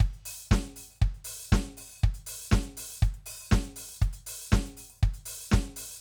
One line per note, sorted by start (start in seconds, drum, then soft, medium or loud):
0.01 kick loud
0.01 closed hi-hat soft
0.14 closed hi-hat soft
0.26 open hi-hat loud
0.39 open hi-hat soft
0.47 hi-hat pedal soft
0.52 kick loud
0.52 snare loud
0.67 closed hi-hat soft
0.77 open hi-hat medium
0.91 open hi-hat soft
0.96 hi-hat pedal soft
1.02 kick loud
1.02 closed hi-hat soft
1.15 closed hi-hat soft
1.25 open hi-hat loud
1.40 open hi-hat soft
1.48 hi-hat pedal soft
1.53 kick loud
1.53 snare loud
1.78 open hi-hat loud
1.93 open hi-hat soft
2.00 hi-hat pedal soft
2.04 kick loud
2.04 closed hi-hat soft
2.15 closed hi-hat soft
2.27 open hi-hat loud
2.43 open hi-hat medium
2.49 snare loud
2.49 hi-hat pedal soft
2.53 kick loud
2.64 closed hi-hat soft
2.78 open hi-hat loud
2.91 open hi-hat medium
2.99 hi-hat pedal soft
3.03 closed hi-hat soft
3.03 kick loud
3.15 closed hi-hat soft
3.27 open hi-hat loud
3.43 open hi-hat soft
3.49 snare loud
3.49 hi-hat pedal soft
3.53 kick loud
3.65 closed hi-hat soft
3.73 open hi-hat loud
3.73 kick soft
3.90 open hi-hat soft
3.98 hi-hat pedal soft
4.03 kick loud
4.03 closed hi-hat medium
4.14 closed hi-hat medium
4.27 open hi-hat loud
4.42 open hi-hat soft
4.49 snare loud
4.49 hi-hat pedal soft
4.53 kick loud
4.66 closed hi-hat soft
4.78 open hi-hat medium
4.91 open hi-hat soft
4.99 hi-hat pedal soft
5.04 kick loud
5.04 closed hi-hat soft
5.15 closed hi-hat medium
5.26 open hi-hat loud
5.41 open hi-hat soft
5.49 snare loud
5.49 hi-hat pedal soft
5.54 kick loud
5.66 closed hi-hat soft
5.77 open hi-hat loud
5.91 open hi-hat medium
5.98 hi-hat pedal soft